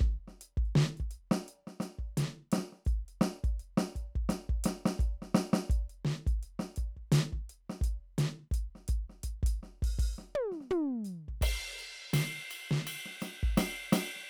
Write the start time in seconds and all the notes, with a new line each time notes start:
0.01 kick
0.28 snare
0.41 closed hi-hat
0.57 kick
0.66 closed hi-hat
0.76 snare
0.97 kick, closed hi-hat
1.11 closed hi-hat
1.32 snare
1.48 closed hi-hat
1.67 snare
1.81 snare, closed hi-hat
1.99 kick
2.18 open hi-hat, snare
2.22 snare
2.52 snare, open hi-hat
2.58 snare
2.73 snare
2.85 kick, closed hi-hat, hi-hat pedal
3.08 closed hi-hat
3.21 snare
3.44 kick, closed hi-hat
3.60 closed hi-hat
3.78 snare
3.96 kick, closed hi-hat
4.16 kick
4.29 snare, closed hi-hat
4.50 kick
4.64 closed hi-hat, snare
4.86 snare
5.00 kick, closed hi-hat
5.22 snare
5.35 snare
5.54 snare
5.70 kick, open hi-hat
5.90 open hi-hat
6.05 snare
6.27 kick, closed hi-hat
6.43 closed hi-hat
6.60 snare
6.76 kick, closed hi-hat
6.97 kick
7.12 open hi-hat, snare
7.33 kick
7.50 open hi-hat
7.70 snare
7.82 kick, open hi-hat
8.18 open hi-hat, snare
8.52 kick, open hi-hat
8.76 snare
8.88 open hi-hat, kick
9.10 snare
9.24 kick, open hi-hat
9.43 kick, open hi-hat
9.63 snare
9.83 kick, open hi-hat
9.99 open hi-hat, kick
10.19 snare
10.35 high tom
10.52 snare
10.61 snare
10.71 floor tom, hi-hat pedal
11.05 hi-hat pedal
11.29 kick
11.42 kick, crash, ride
11.79 hi-hat pedal
12.14 snare, ride
12.50 hi-hat pedal, ride
12.71 snare
12.87 hi-hat pedal, ride
13.06 snare
13.21 snare, hi-hat pedal, ride
13.43 kick
13.58 snare, ride
13.93 snare, ride
14.17 snare